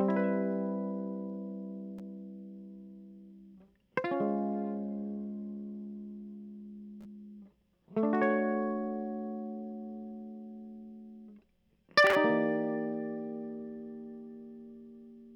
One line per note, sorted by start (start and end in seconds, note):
0.00 3.66 C4
0.09 3.67 E4
0.17 3.31 B4
3.98 4.05 C5
4.05 7.46 F4
4.12 7.52 C#4
4.21 7.43 G#3
7.43 7.52 G3
7.97 11.42 A3
8.04 11.45 D4
8.13 11.38 F#4
8.22 11.28 C#5
11.98 14.93 D5
12.04 15.36 G4
12.17 15.36 D#4
12.25 15.36 A#3
12.31 14.44 E3